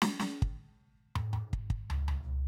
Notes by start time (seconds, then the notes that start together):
0.02 snare
0.20 snare
0.42 kick
1.16 mid tom
1.33 mid tom
1.53 kick
1.70 kick
1.90 floor tom
2.08 floor tom
2.23 hi-hat pedal